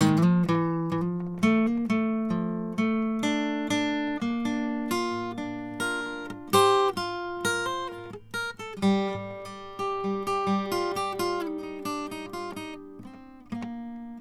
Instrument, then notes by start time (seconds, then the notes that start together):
acoustic guitar
0.01 A#2 D#3 G#3
0.19 F3 A#3
0.50 E3
0.93 E3
1.03 F3
1.44 E3 A3
1.68 A#3
1.91 A3
2.31 F3
2.79 A3
3.24 D4
3.72 D4
4.23 A#3
4.46 D4
4.92 F4
5.39 D4
5.81 F4 A#4
6.07 F4
6.54 D#4 G4 C5
6.90 D4
6.98 F4
7.46 A#4
7.67 C5
7.89 A#4
8.35 A#4
8.61 A4
8.84 G3
9.80 G4
10.05 G3
10.28 G4
10.48 G3
10.73 F4
10.97 G4
11.20 F4
11.48 D#4
11.60 D#4
11.86 D4
12.13 D#4
12.34 F4
12.58 D#4
12.75 D4
13.06 C4
13.53 A#3